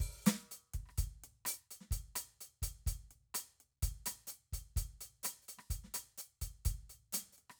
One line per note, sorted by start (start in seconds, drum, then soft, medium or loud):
0.02 open hi-hat medium
0.02 kick soft
0.26 closed hi-hat medium
0.26 snare medium
0.52 closed hi-hat soft
0.74 kick soft
0.74 closed hi-hat soft
0.86 cross-stick soft
0.89 cross-stick soft
0.98 closed hi-hat medium
0.98 kick soft
1.24 closed hi-hat soft
1.46 open hi-hat medium
1.46 cross-stick soft
1.46 hi-hat pedal medium
1.71 closed hi-hat soft
1.81 snare soft
1.91 closed hi-hat medium
1.91 kick soft
2.16 closed hi-hat medium
2.16 cross-stick soft
2.41 closed hi-hat soft
2.62 closed hi-hat medium
2.62 kick soft
2.87 closed hi-hat medium
2.87 kick soft
3.11 closed hi-hat soft
3.34 closed hi-hat medium
3.34 cross-stick soft
3.34 snare soft
3.61 closed hi-hat soft
3.83 closed hi-hat medium
3.83 kick soft
4.06 closed hi-hat medium
4.06 cross-stick soft
4.06 snare soft
4.27 hi-hat pedal medium
4.32 closed hi-hat soft
4.53 closed hi-hat soft
4.53 kick soft
4.77 closed hi-hat medium
4.77 kick soft
5.01 closed hi-hat soft
5.23 closed hi-hat medium
5.23 cross-stick soft
5.23 snare soft
5.23 hi-hat pedal medium
5.42 hi-hat pedal soft
5.49 closed hi-hat soft
5.58 cross-stick soft
5.58 snare soft
5.70 closed hi-hat medium
5.70 kick soft
5.84 snare soft
5.94 closed hi-hat medium
5.94 cross-stick soft
6.18 hi-hat pedal medium
6.42 closed hi-hat soft
6.42 kick soft
6.65 closed hi-hat medium
6.65 kick soft
6.90 closed hi-hat soft
7.13 closed hi-hat medium
7.13 snare soft
7.13 hi-hat pedal medium
7.33 hi-hat pedal soft
7.38 closed hi-hat soft
7.50 cross-stick soft
7.50 snare soft